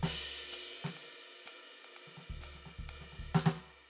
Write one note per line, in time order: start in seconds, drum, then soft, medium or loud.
0.01 snare medium
0.01 hi-hat pedal soft
0.01 ride loud
0.43 snare soft
0.53 hi-hat pedal loud
0.53 ride medium
0.84 snare medium
0.84 ride medium
0.96 hi-hat pedal soft
0.96 ride medium
1.46 hi-hat pedal loud
1.46 ride loud
1.85 ride medium
1.91 hi-hat pedal soft
1.97 ride medium
2.07 snare soft
2.17 snare soft
2.30 kick soft
2.41 hi-hat pedal loud
2.41 ride medium
2.55 snare soft
2.61 hi-hat pedal soft
2.66 snare soft
2.79 kick soft
2.87 hi-hat pedal soft
2.87 ride loud
3.01 snare soft
3.13 snare soft
3.19 kick soft
3.35 snare loud
3.35 hi-hat pedal loud
3.46 snare loud